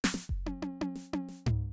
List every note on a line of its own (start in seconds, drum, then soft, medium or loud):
0.04 snare loud
0.14 snare medium
0.29 kick soft
0.46 high tom loud
0.62 high tom loud
0.81 high tom loud
0.96 snare soft
1.13 high tom loud
1.29 snare soft
1.46 floor tom loud